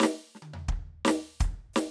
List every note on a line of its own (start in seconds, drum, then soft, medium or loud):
0.00 snare loud
0.03 snare loud
0.35 snare soft
0.42 high tom medium
0.53 floor tom medium
0.68 kick loud
1.05 snare loud
1.08 snare loud
1.40 open hi-hat medium
1.40 kick loud
1.73 snare loud
1.73 hi-hat pedal medium